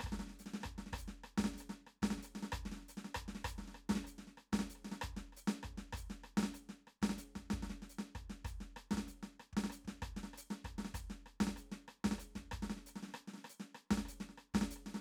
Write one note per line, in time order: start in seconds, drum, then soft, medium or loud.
0.01 kick soft
0.01 cross-stick medium
0.07 cross-stick soft
0.13 snare soft
0.20 snare soft
0.27 snare soft
0.30 snare soft
0.40 snare soft
0.40 hi-hat pedal soft
0.47 snare soft
0.54 snare soft
0.61 cross-stick medium
0.61 snare soft
0.66 kick soft
0.79 snare soft
0.87 snare soft
0.93 kick soft
0.93 cross-stick medium
0.99 hi-hat pedal soft
1.09 snare soft
1.24 cross-stick medium
1.39 kick soft
1.39 snare medium
1.45 snare medium
1.54 snare soft
1.59 cross-stick soft
1.59 hi-hat pedal soft
1.70 snare soft
1.88 cross-stick soft
2.03 kick soft
2.03 snare medium
2.11 snare soft
2.18 snare soft
2.23 cross-stick soft
2.23 hi-hat pedal medium
2.31 snare soft
2.36 snare soft
2.43 snare soft
2.53 kick soft
2.53 cross-stick medium
2.66 snare soft
2.72 snare soft
2.77 snare soft
2.83 snare soft
2.89 cross-stick soft
2.89 hi-hat pedal soft
2.98 snare soft
3.05 snare soft
3.15 kick soft
3.15 cross-stick medium
3.29 snare soft
3.36 snare soft
3.41 snare soft
3.45 kick soft
3.45 cross-stick medium
3.45 hi-hat pedal soft
3.59 snare soft
3.64 snare soft
3.68 snare soft
3.75 cross-stick soft
3.90 kick soft
3.90 snare medium
3.96 snare medium
4.05 cross-stick soft
4.05 hi-hat pedal soft
4.14 snare soft
4.19 snare soft
4.28 snare soft
4.38 cross-stick soft
4.53 kick soft
4.53 snare medium
4.60 snare medium
4.68 snare soft
4.68 hi-hat pedal soft
4.76 cross-stick soft
4.82 snare soft
4.85 snare soft
5.02 kick soft
5.02 cross-stick medium
5.17 snare soft
5.33 cross-stick soft
5.37 hi-hat pedal medium
5.48 snare medium
5.64 kick soft
5.64 cross-stick medium
5.78 snare soft
5.93 kick soft
5.93 cross-stick medium
5.98 hi-hat pedal medium
6.11 snare soft
6.24 cross-stick soft
6.38 kick soft
6.38 snare medium
6.44 snare medium
6.55 cross-stick soft
6.55 hi-hat pedal soft
6.70 snare soft
6.88 cross-stick soft
7.03 kick soft
7.03 snare medium
7.10 snare medium
7.18 snare soft
7.18 hi-hat pedal medium
7.36 kick soft
7.36 snare soft
7.51 kick soft
7.51 snare medium
7.63 snare soft
7.70 snare soft
7.83 snare soft
7.90 hi-hat pedal soft
7.99 snare soft
8.16 kick soft
8.16 cross-stick medium
8.30 snare soft
8.45 kick soft
8.45 cross-stick medium
8.45 hi-hat pedal soft
8.61 snare soft
8.77 cross-stick medium
8.92 kick soft
8.92 snare medium
8.98 snare medium
9.08 snare soft
9.08 hi-hat pedal soft
9.24 snare soft
9.40 cross-stick soft
9.54 kick soft
9.54 snare medium
9.65 snare soft
9.71 cross-stick soft
9.71 hi-hat pedal medium
9.86 kick soft
9.86 snare soft
10.03 kick soft
10.03 cross-stick medium
10.17 snare soft
10.24 snare soft
10.34 cross-stick soft
10.38 hi-hat pedal medium
10.51 snare soft
10.65 kick soft
10.65 cross-stick medium
10.79 snare soft
10.86 snare soft
10.95 kick soft
10.95 cross-stick medium
10.95 hi-hat pedal medium
11.11 snare soft
11.27 cross-stick soft
11.41 kick soft
11.41 snare medium
11.48 snare medium
11.57 cross-stick soft
11.57 hi-hat pedal soft
11.73 snare soft
11.89 cross-stick soft
12.05 kick soft
12.05 snare medium
12.12 snare soft
12.19 cross-stick soft
12.19 hi-hat pedal medium
12.36 kick soft
12.36 snare soft
12.52 kick soft
12.52 cross-stick medium
12.63 snare soft
12.70 snare soft
12.77 snare soft
12.82 snare soft
12.87 cross-stick soft
12.87 hi-hat pedal soft
12.96 snare soft
13.04 snare soft
13.09 snare soft
13.15 cross-stick medium
13.28 snare soft
13.34 snare soft
13.39 snare soft
13.45 cross-stick medium
13.50 hi-hat pedal soft
13.61 snare soft
13.76 cross-stick medium
13.92 kick soft
13.92 snare medium
13.98 snare soft
14.06 cross-stick soft
14.06 hi-hat pedal medium
14.13 cross-stick soft
14.21 snare soft
14.30 snare soft
14.39 cross-stick soft
14.55 kick soft
14.55 snare medium
14.62 snare medium
14.69 snare soft
14.69 hi-hat pedal medium
14.77 cross-stick soft
14.82 snare soft
14.87 snare soft
14.95 snare soft